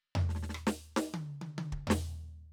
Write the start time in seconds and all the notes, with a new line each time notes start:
0.15 floor tom
0.29 snare
0.35 snare
0.42 snare
0.49 snare
0.54 cross-stick
0.67 snare
0.96 snare
1.14 high tom
1.41 high tom
1.58 high tom
1.72 kick
1.87 snare, floor tom